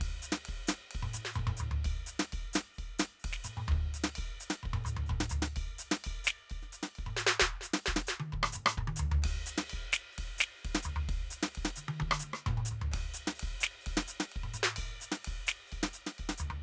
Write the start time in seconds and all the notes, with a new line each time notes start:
0.01 kick, ride
0.09 kick
0.22 hi-hat pedal, ride
0.32 snare
0.42 hi-hat pedal, ride
0.49 kick
0.67 snare, hi-hat pedal
0.91 kick, ride
1.01 kick, mid tom
1.14 hi-hat pedal, mid tom
1.25 snare
1.33 hi-hat pedal, mid tom
1.39 kick
1.47 mid tom
1.57 floor tom, hi-hat pedal
1.71 floor tom
1.85 kick, ride bell
1.95 kick
2.06 hi-hat pedal, ride
2.19 snare
2.32 kick, ride bell
2.41 kick
2.53 snare, hi-hat pedal
2.74 hi-hat pedal
2.78 kick, ride bell
2.99 snare, hi-hat pedal
3.20 hi-hat pedal
3.24 kick, ride
3.32 kick, snare
3.44 kick, hi-hat pedal, mid tom
3.57 mid tom
3.68 kick, floor tom
3.80 kick
3.94 hi-hat pedal, ride
4.04 snare
4.15 kick, ride bell
4.40 hi-hat pedal, ride
4.50 snare
4.63 kick, mid tom
4.73 kick, mid tom
4.84 floor tom, hi-hat pedal, ride
4.97 floor tom
5.06 hi-hat pedal, mid tom
5.11 kick
5.20 snare
5.29 floor tom, hi-hat pedal
5.42 snare
5.56 kick, ride bell
5.65 kick
5.78 hi-hat pedal
5.83 ride
5.91 snare
6.04 kick, ride bell
6.24 snare, hi-hat pedal
6.50 kick, ride bell
6.62 snare
6.72 hi-hat pedal, ride
6.83 snare
6.95 kick, ride bell
7.06 mid tom
7.17 snare, hi-hat pedal
7.22 ride
7.27 snare
7.40 kick, snare
7.49 kick
7.61 snare, hi-hat pedal
7.74 snare
7.84 snare, hi-hat pedal
7.88 kick
7.94 kick
7.96 kick, snare
8.07 snare, hi-hat pedal
8.20 high tom
8.32 kick, mid tom
8.43 cross-stick
8.52 hi-hat pedal, mid tom
8.66 cross-stick
8.72 hi-hat pedal
8.77 kick, mid tom
8.85 kick, high tom
8.96 floor tom, hi-hat pedal
9.12 floor tom
9.22 kick, percussion, ride
9.34 kick
9.46 hi-hat pedal, ride
9.58 snare
9.66 hi-hat pedal, ride bell
9.73 kick
9.92 snare, hi-hat pedal
10.13 hi-hat pedal
10.18 kick, ride
10.38 snare, hi-hat pedal
10.58 hi-hat pedal
10.65 kick, ride
10.75 snare
10.83 floor tom, hi-hat pedal
10.96 floor tom
11.09 kick, ride
11.30 hi-hat pedal, ride
11.43 snare
11.51 hi-hat pedal, ride
11.57 kick
11.65 snare
11.76 hi-hat pedal, high tom
11.88 high tom
12.00 kick, high tom
12.08 kick, cross-stick
12.19 hi-hat pedal, high tom
12.33 cross-stick
12.46 kick, mid tom
12.57 kick, mid tom
12.65 hi-hat pedal
12.71 floor tom
12.82 floor tom
12.92 kick, percussion, ride
13.03 kick
13.14 hi-hat pedal
13.19 ride
13.27 snare
13.35 hi-hat pedal
13.40 kick, ride
13.49 kick
13.51 kick
13.61 snare, hi-hat pedal
13.81 hi-hat pedal
13.86 kick, ride
13.97 snare
14.07 hi-hat pedal, ride
14.20 snare
14.29 hi-hat pedal, ride
14.36 kick
14.43 mid tom
14.54 hi-hat pedal, mid tom
14.63 snare
14.75 kick, hi-hat pedal, ride bell
15.00 hi-hat pedal, ride
15.12 snare
15.21 hi-hat pedal, ride
15.27 kick
15.47 snare, hi-hat pedal
15.67 hi-hat pedal
15.72 kick, ride bell
15.83 snare
15.93 hi-hat pedal, ride
16.07 snare
16.14 hi-hat pedal
16.18 kick, ride bell
16.29 snare
16.38 floor tom, hi-hat pedal
16.50 floor tom